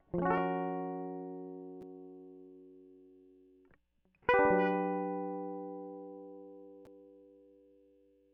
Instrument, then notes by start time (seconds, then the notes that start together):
electric guitar
0.15 F3
0.22 C#4 F#4
0.31 A4
0.39 A#4
4.29 D4 G4 B4
4.51 F#3